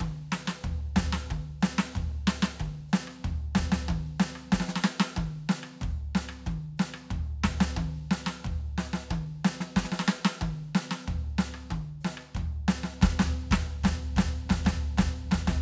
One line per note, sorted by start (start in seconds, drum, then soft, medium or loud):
0.01 kick soft
0.01 hi-hat pedal soft
0.01 high tom loud
0.30 snare loud
0.30 hi-hat pedal soft
0.48 snare loud
0.64 kick soft
0.64 floor tom loud
0.96 kick soft
0.96 snare loud
0.96 floor tom loud
1.13 snare loud
1.31 kick medium
1.31 hi-hat pedal soft
1.31 high tom loud
1.61 snare loud
1.61 hi-hat pedal soft
1.79 snare loud
1.96 kick medium
1.96 floor tom loud
2.02 hi-hat pedal soft
2.28 snare loud
2.28 hi-hat pedal soft
2.43 snare loud
2.60 kick medium
2.60 hi-hat pedal soft
2.60 high tom loud
2.89 hi-hat pedal soft
2.94 snare loud
3.08 cross-stick medium
3.25 kick soft
3.25 floor tom loud
3.56 kick soft
3.56 snare loud
3.56 floor tom loud
3.72 snare loud
3.89 kick medium
3.89 hi-hat pedal soft
3.89 high tom loud
4.19 snare loud
4.19 hi-hat pedal soft
4.36 cross-stick medium
4.53 kick soft
4.53 snare loud
4.59 snare medium
4.59 hi-hat pedal soft
4.69 snare medium
4.76 snare loud
4.84 snare loud
4.91 hi-hat pedal soft
5.00 snare loud
5.17 kick medium
5.17 high tom loud
5.22 hi-hat pedal soft
5.50 snare loud
5.64 cross-stick medium
5.82 kick medium
5.82 floor tom loud
5.87 hi-hat pedal soft
6.15 snare loud
6.29 cross-stick medium
6.47 kick medium
6.47 hi-hat pedal soft
6.47 high tom loud
6.78 snare loud
6.78 hi-hat pedal soft
6.94 cross-stick medium
7.11 kick medium
7.11 floor tom loud
7.44 kick soft
7.44 snare loud
7.44 floor tom loud
7.61 snare loud
7.77 kick medium
7.77 hi-hat pedal soft
7.77 high tom loud
8.11 snare loud
8.27 snare loud
8.45 kick soft
8.45 floor tom loud
8.52 hi-hat pedal soft
8.78 snare loud
8.94 snare loud
9.11 kick medium
9.11 hi-hat pedal soft
9.11 high tom loud
9.45 snare loud
9.61 snare medium
9.77 kick soft
9.77 snare loud
9.85 snare medium
9.92 snare medium
10.00 snare loud
10.08 snare loud
10.08 hi-hat pedal soft
10.25 snare loud
10.42 kick medium
10.42 high tom loud
10.75 snare loud
10.91 snare medium
11.08 kick medium
11.08 floor tom loud
11.39 snare loud
11.54 cross-stick medium
11.71 kick soft
11.71 hi-hat pedal soft
11.71 high tom loud
12.01 snare loud
12.01 hi-hat pedal soft
12.18 cross-stick medium
12.35 kick medium
12.35 floor tom loud
12.35 hi-hat pedal medium
12.69 snare loud
12.84 snare medium
13.02 kick loud
13.02 snare loud
13.02 floor tom loud
13.20 kick soft
13.20 snare loud
13.20 floor tom loud
13.52 kick medium
13.52 snare loud
13.52 floor tom loud
13.84 kick medium
13.84 snare loud
13.84 floor tom loud
14.17 kick medium
14.17 snare loud
14.17 floor tom loud
14.50 kick medium
14.50 snare loud
14.50 floor tom loud
14.66 kick medium
14.66 snare loud
14.66 floor tom loud
14.98 kick medium
14.98 snare loud
14.98 floor tom loud
15.32 kick soft
15.32 snare loud
15.32 floor tom loud
15.48 kick medium
15.48 snare loud
15.48 floor tom loud